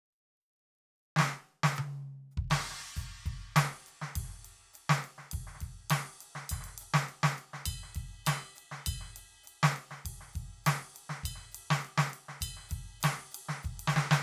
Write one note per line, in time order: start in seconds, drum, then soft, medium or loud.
1.16 snare loud
1.16 hi-hat pedal medium
1.19 snare loud
1.20 snare loud
1.27 snare soft
1.40 snare soft
1.42 snare soft
1.63 snare loud
1.72 snare soft
1.72 hi-hat pedal loud
1.78 high tom loud
2.31 hi-hat pedal soft
2.37 kick medium
2.44 kick soft
2.48 kick soft
2.48 snare loud
2.48 crash loud
2.58 snare soft
2.71 snare soft
2.80 snare soft
2.86 snare soft
2.96 open hi-hat medium
2.96 kick soft
3.05 kick soft
3.26 closed hi-hat medium
3.26 kick soft
3.32 kick soft
3.56 snare loud
3.56 ride loud
3.63 snare soft
3.86 hi-hat pedal medium
3.86 ride soft
4.01 snare medium
4.15 kick soft
4.15 hi-hat pedal soft
4.15 ride loud
4.22 kick soft
4.22 snare soft
4.25 kick soft
4.25 snare soft
4.30 snare soft
4.45 ride medium
4.73 hi-hat pedal medium
4.73 ride medium
4.89 snare loud
5.01 hi-hat pedal medium
5.01 ride soft
5.18 snare soft
5.31 kick soft
5.31 hi-hat pedal medium
5.31 ride medium
5.47 snare soft
5.55 snare soft
5.55 hi-hat pedal soft
5.61 kick soft
5.61 ride medium
5.90 snare loud
5.90 hi-hat pedal medium
5.90 ride loud
6.02 snare soft
6.21 hi-hat pedal medium
6.21 ride medium
6.35 snare medium
6.49 kick soft
6.49 snare soft
6.49 hi-hat pedal medium
6.49 ride bell medium
6.60 kick soft
6.60 snare soft
6.64 snare soft
6.64 ride medium
6.78 hi-hat pedal medium
6.78 ride medium
6.94 snare loud
7.07 hi-hat pedal medium
7.07 ride soft
7.23 snare loud
7.37 hi-hat pedal medium
7.37 ride soft
7.53 snare medium
7.66 kick soft
7.66 hi-hat pedal medium
7.66 ride bell loud
7.83 snare soft
7.88 snare soft
7.95 kick soft
7.95 hi-hat pedal medium
7.95 ride medium
8.25 snare loud
8.25 hi-hat pedal medium
8.25 ride bell loud
8.55 hi-hat pedal medium
8.55 ride soft
8.71 snare medium
8.85 kick soft
8.85 hi-hat pedal medium
8.85 ride bell loud
8.93 kick soft
8.96 kick soft
9.01 snare soft
9.16 hi-hat pedal medium
9.16 ride medium
9.43 hi-hat pedal medium
9.47 ride medium
9.63 snare loud
9.72 hi-hat pedal medium
9.76 ride soft
9.91 snare soft
10.04 kick soft
10.04 hi-hat pedal soft
10.04 ride loud
10.21 snare soft
10.33 kick soft
10.33 hi-hat pedal medium
10.33 ride soft
10.43 kick soft
10.64 snare loud
10.64 hi-hat pedal soft
10.64 ride loud
10.94 hi-hat pedal medium
10.94 ride medium
11.09 snare medium
11.23 kick soft
11.23 hi-hat pedal medium
11.23 ride bell loud
11.29 kick soft
11.35 snare soft
11.40 snare soft
11.51 hi-hat pedal medium
11.51 ride medium
11.70 snare loud
11.80 hi-hat pedal medium
11.85 ride soft
11.98 snare loud
12.09 hi-hat pedal medium
12.13 ride medium
12.28 snare soft
12.40 kick soft
12.40 hi-hat pedal medium
12.40 ride bell loud
12.57 snare soft
12.63 snare soft
12.68 kick soft
12.68 snare soft
12.68 hi-hat pedal medium
12.68 ride medium
13.00 snare loud
13.00 hi-hat pedal medium
13.00 ride loud
13.10 snare soft
13.31 hi-hat pedal medium
13.31 ride loud
13.49 snare medium
13.62 kick soft
13.62 hi-hat pedal medium
13.62 ride soft
13.73 kick soft
13.79 ride medium
13.87 snare medium
13.92 hi-hat pedal medium
13.96 snare loud
14.11 snare loud